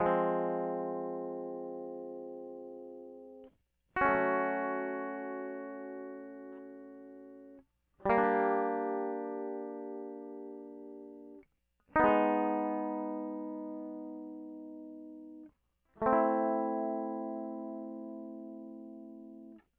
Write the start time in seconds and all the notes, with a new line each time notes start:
0.00 F3 G#3
0.06 C4
3.96 F#4
4.01 A3 C#4
4.09 F#3
4.16 C3
8.06 G3 A#3
8.18 D4
11.96 D#4
12.00 B3
12.04 G#3
16.02 A3
16.06 C4
16.12 E4